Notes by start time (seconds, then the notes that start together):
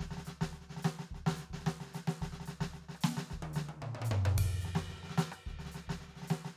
0.01 kick, snare
0.12 snare
0.18 snare
0.26 snare, hi-hat pedal
0.42 kick, snare
0.54 snare
0.62 snare
0.69 snare
0.77 snare
0.83 snare, hi-hat pedal
1.00 snare
1.12 kick, snare
1.27 snare
1.32 snare
1.37 snare, hi-hat pedal
1.51 kick, snare
1.59 snare
1.64 snare
1.67 snare
1.81 snare
1.85 snare
1.90 snare
1.95 hi-hat pedal
2.08 snare
2.22 kick, snare
2.29 kick
2.33 snare
2.41 snare
2.46 snare, hi-hat pedal
2.61 kick, snare
2.74 snare
2.82 snare
2.89 snare
2.96 cross-stick
3.02 snare, hi-hat pedal
3.18 snare
3.31 kick, snare
3.40 kick, high tom
3.54 snare, hi-hat pedal
3.70 high tom
3.82 kick, mid tom
3.96 mid tom
4.02 hi-hat pedal, mid tom
4.12 floor tom
4.26 mid tom
4.39 kick, ride
4.46 kick
4.52 kick
4.61 hi-hat pedal
4.66 snare
4.76 snare
4.82 kick
4.90 snare
4.96 snare
5.01 snare
5.04 snare
5.10 snare
5.19 snare, hi-hat pedal
5.32 cross-stick
5.47 kick, snare
5.54 kick
5.60 snare
5.66 snare
5.72 snare, hi-hat pedal
5.75 snare
5.89 kick, snare
6.01 snare
6.09 snare
6.15 snare
6.16 snare
6.23 snare
6.28 snare, hi-hat pedal
6.46 snare